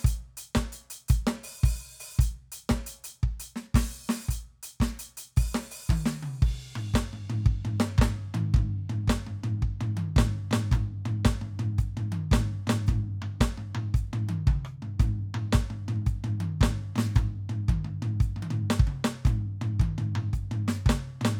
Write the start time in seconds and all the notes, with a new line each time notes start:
0.01 kick, hi-hat pedal
0.06 closed hi-hat
0.37 closed hi-hat
0.55 kick, snare
0.72 closed hi-hat
0.90 closed hi-hat
1.08 closed hi-hat, kick
1.27 snare
1.43 open hi-hat
1.63 open hi-hat, kick
2.00 open hi-hat
2.16 kick, hi-hat pedal
2.21 closed hi-hat
2.52 closed hi-hat
2.69 kick, snare
2.86 closed hi-hat
3.04 closed hi-hat
3.23 kick
3.40 closed hi-hat
3.56 snare
3.74 open hi-hat, kick, snare
4.09 open hi-hat, snare
4.26 kick, hi-hat pedal
4.30 closed hi-hat
4.63 closed hi-hat
4.80 kick, snare
4.99 closed hi-hat
5.17 closed hi-hat
5.36 open hi-hat, kick
5.54 snare
5.71 open hi-hat
5.89 kick, high tom
6.06 snare
6.23 mid tom
6.42 kick, ride
6.75 floor tom
6.94 kick, snare, hi-hat pedal
7.13 floor tom
7.30 floor tom
7.46 kick
7.65 floor tom
7.80 snare
7.98 kick, snare, floor tom
8.34 floor tom, high tom
8.54 kick, floor tom
8.90 floor tom
9.08 kick, snare, hi-hat pedal
9.27 floor tom
9.44 floor tom
9.62 kick
9.81 floor tom
9.97 high tom
10.16 kick, snare, floor tom
10.51 snare, floor tom
10.71 kick, hi-hat pedal, floor tom
11.05 floor tom
11.25 kick, snare
11.41 floor tom
11.59 floor tom
11.78 kick, hi-hat pedal
11.97 floor tom
12.12 high tom
12.31 kick, snare, floor tom
12.67 snare, floor tom
12.87 kick, floor tom, hi-hat pedal
13.22 floor tom
13.41 kick, snare
13.58 floor tom
13.75 floor tom
13.94 kick, hi-hat pedal
14.13 floor tom
14.29 high tom
14.47 kick, mid tom
14.65 cross-stick
14.82 floor tom
15.00 kick, floor tom, hi-hat pedal
15.34 floor tom
15.52 kick, snare
15.70 floor tom
15.88 floor tom
15.96 floor tom
16.06 kick, hi-hat pedal
16.24 floor tom
16.40 high tom
16.61 kick, snare, floor tom
16.96 snare, floor tom
17.15 kick, hi-hat pedal, floor tom
17.49 floor tom
17.68 kick, high tom
17.85 floor tom
18.02 floor tom
18.09 floor tom
18.20 kick, hi-hat pedal
18.36 floor tom
18.42 high tom
18.50 floor tom
18.70 snare
18.79 kick
18.87 mid tom
19.04 snare
19.25 kick, floor tom, hi-hat pedal
19.61 floor tom
19.80 kick, high tom
19.98 floor tom
20.15 floor tom
20.33 kick, hi-hat pedal
20.51 floor tom
20.68 snare
20.86 kick, snare, mid tom
21.21 snare, floor tom